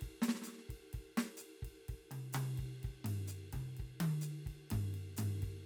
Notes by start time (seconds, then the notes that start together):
0.01 kick, ride
0.07 kick
0.22 snare, ride
0.28 snare
0.35 snare
0.42 snare, hi-hat pedal, ride
0.47 snare
0.52 snare
0.58 snare
0.63 snare
0.68 kick, snare, ride
0.72 snare
0.76 snare
0.80 snare
0.83 snare
0.93 kick, ride
1.17 snare, ride
1.37 hi-hat pedal
1.41 ride
1.62 kick, ride
1.68 kick
1.88 kick, ride
1.94 kick
2.11 mid tom, ride
2.33 hi-hat pedal, mid tom, ride
2.58 kick, ride
2.64 kick
2.83 kick, ride
2.90 kick
3.04 floor tom, ride
3.27 hi-hat pedal, ride
3.53 kick, mid tom, ride
3.59 kick
3.77 kick, ride
3.85 kick
4.00 high tom, ride
4.21 hi-hat pedal, ride
4.46 kick, ride
4.51 kick
4.70 kick, floor tom, ride
4.94 ride
5.17 floor tom, hi-hat pedal, ride
5.42 kick, ride
5.48 kick